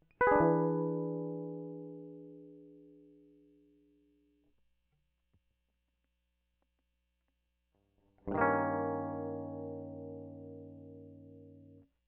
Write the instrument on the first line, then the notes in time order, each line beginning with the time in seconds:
electric guitar
0.21 B4
0.27 G#4
0.32 D4
0.41 E3
8.29 G2
8.35 D#3 A#3
8.42 C#4